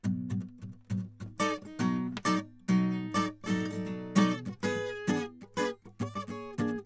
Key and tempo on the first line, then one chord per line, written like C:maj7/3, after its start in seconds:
B major, 200 BPM
0.00 B:7(#9)
4.80 E:7(#11)